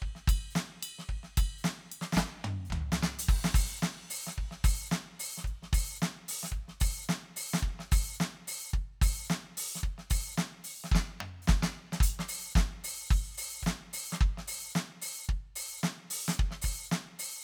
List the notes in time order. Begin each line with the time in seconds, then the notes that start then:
0.02 kick
0.16 snare
0.28 kick, ride bell
0.51 hi-hat pedal
0.56 snare
0.83 ride bell
0.99 snare
1.09 kick
1.24 snare
1.38 kick, ride bell
1.59 hi-hat pedal
1.65 snare
1.92 ride bell
2.02 snare
2.13 kick, snare
2.18 snare
2.45 high tom
2.66 hi-hat pedal
2.71 kick, mid tom
2.93 snare
3.03 snare
3.19 closed hi-hat
3.29 kick, crash
3.45 snare
3.55 open hi-hat, kick
3.78 hi-hat pedal
3.83 snare
4.11 open hi-hat
4.27 snare
4.32 closed hi-hat, hi-hat pedal
4.38 kick
4.52 snare
4.65 open hi-hat, kick
4.88 hi-hat pedal
4.92 snare
5.20 open hi-hat
5.38 snare, hi-hat pedal
5.45 kick, closed hi-hat
5.63 snare
5.74 open hi-hat, kick
5.98 hi-hat pedal
6.03 snare
6.29 open hi-hat
6.44 snare
6.50 kick, hi-hat pedal
6.54 closed hi-hat
6.69 snare
6.81 open hi-hat, kick
7.05 hi-hat pedal
7.10 snare
7.37 open hi-hat
7.54 snare
7.60 kick, hi-hat pedal
7.80 snare
7.92 open hi-hat, kick
8.16 hi-hat pedal
8.21 snare
8.48 open hi-hat
8.70 kick, closed hi-hat, hi-hat pedal
9.02 open hi-hat, kick
9.27 snare, hi-hat pedal
9.58 open hi-hat
9.76 snare
9.81 kick, hi-hat pedal
9.99 snare
10.11 open hi-hat, kick
10.35 snare, hi-hat pedal
10.65 open hi-hat
10.85 snare, hi-hat pedal
10.92 kick, snare
11.21 high tom
11.43 hi-hat pedal
11.48 kick, snare
11.63 snare
11.93 snare
12.01 closed hi-hat, kick
12.20 snare
12.29 open hi-hat
12.52 kick, hi-hat pedal
12.57 snare
12.85 open hi-hat
13.11 kick
13.38 open hi-hat
13.63 kick, snare, hi-hat pedal
13.94 open hi-hat
14.13 snare, hi-hat pedal
14.21 kick
14.38 snare
14.48 open hi-hat
14.73 snare, hi-hat pedal
15.02 open hi-hat
15.26 kick, hi-hat pedal
15.56 open hi-hat
15.81 snare, hi-hat pedal
16.11 open hi-hat
16.29 snare
16.35 hi-hat pedal
16.40 kick
16.52 snare
16.62 open hi-hat, kick
16.88 hi-hat pedal
16.92 snare
17.20 open hi-hat